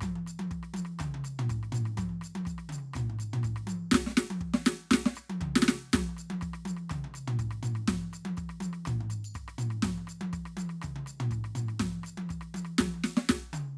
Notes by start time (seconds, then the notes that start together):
0.01 kick, cross-stick, high tom, percussion
0.16 high tom
0.20 high tom
0.27 cross-stick, percussion
0.39 high tom
0.51 kick, cross-stick, percussion
0.63 cross-stick
0.74 high tom, percussion
0.85 cross-stick
0.99 kick, cross-stick, mid tom, percussion
1.14 mid tom
1.24 cross-stick, percussion
1.39 floor tom
1.50 kick, cross-stick, percussion
1.63 cross-stick
1.72 floor tom, percussion
1.86 cross-stick
1.98 kick, cross-stick, high tom, percussion
2.09 high tom
2.12 high tom
2.22 cross-stick, percussion
2.35 high tom
2.46 kick, cross-stick, percussion
2.58 cross-stick
2.69 mid tom, percussion
2.79 cross-stick
2.94 kick, cross-stick, floor tom, percussion
3.10 floor tom
3.19 cross-stick, percussion
3.34 floor tom
3.43 kick, cross-stick, percussion
3.56 cross-stick
3.67 high tom, percussion
3.92 kick, snare, percussion
3.95 snare
4.07 snare
4.10 snare
4.17 kick, snare, percussion
4.31 high tom
4.41 kick
4.54 snare
4.66 snare, percussion
4.91 kick, snare
4.94 snare
5.06 snare
5.14 kick, cross-stick, percussion
5.30 high tom
5.41 kick, mid tom
5.56 snare
5.62 snare
5.67 kick, snare, percussion
5.93 kick, snare, high tom, percussion
6.09 high tom
6.17 cross-stick, percussion
6.30 high tom
6.41 kick, cross-stick, percussion
6.54 cross-stick
6.66 high tom, percussion
6.77 cross-stick
6.90 kick, cross-stick, mid tom, percussion
7.04 mid tom
7.14 cross-stick, percussion
7.28 floor tom
7.39 kick, cross-stick, percussion
7.51 cross-stick
7.63 floor tom, percussion
7.76 cross-stick
7.88 kick, snare, high tom, percussion
8.02 high tom
8.13 cross-stick, percussion
8.25 high tom
8.37 kick, cross-stick, percussion
8.49 cross-stick
8.61 high tom, percussion
8.73 cross-stick
8.86 kick, cross-stick, floor tom, percussion
9.01 floor tom
9.10 cross-stick, percussion
9.25 percussion
9.35 kick, cross-stick, percussion
9.48 cross-stick
9.59 floor tom, percussion
9.71 cross-stick
9.83 kick, snare, high tom, percussion
9.98 high tom
10.07 cross-stick, percussion
10.21 high tom
10.33 kick, cross-stick, percussion
10.46 cross-stick
10.57 high tom, percussion
10.70 cross-stick
10.82 kick, cross-stick, mid tom, percussion
10.96 mid tom
11.06 cross-stick, percussion
11.20 floor tom
11.31 kick, cross-stick, percussion
11.44 cross-stick
11.55 floor tom, percussion
11.69 cross-stick
11.80 kick, snare, high tom, percussion
11.92 high tom
11.95 high tom
12.04 cross-stick, percussion
12.18 high tom
12.30 kick, cross-stick, percussion
12.41 cross-stick
12.55 high tom, percussion
12.65 cross-stick
12.79 kick, snare, high tom, percussion
12.94 high tom
13.04 snare, percussion
13.17 snare
13.29 kick, snare, percussion
13.53 mid tom, percussion